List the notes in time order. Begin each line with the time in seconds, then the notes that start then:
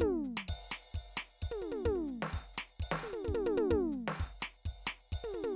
0.01 kick, mid tom
0.25 hi-hat pedal
0.38 snare
0.49 kick, ride
0.70 snare, hi-hat pedal
0.95 kick, ride bell
1.16 snare, hi-hat pedal
1.43 kick, ride
1.52 mid tom
1.62 hi-hat pedal, mid tom
1.72 mid tom
1.86 kick, mid tom
1.92 kick
2.08 hi-hat pedal
2.23 snare
2.34 kick, ride bell
2.54 hi-hat pedal
2.59 snare
2.80 kick, ride
2.92 snare
3.00 hi-hat pedal, mid tom
3.13 mid tom
3.25 mid tom
3.29 kick
3.46 hi-hat pedal, mid tom
3.58 mid tom
3.71 kick, mid tom
3.93 hi-hat pedal
4.08 snare
4.20 kick, ride bell
4.28 kick
4.40 snare, hi-hat pedal
4.66 kick, ride bell
4.73 kick
4.86 snare, hi-hat pedal
5.13 kick, ride
5.24 mid tom
5.32 hi-hat pedal
5.44 mid tom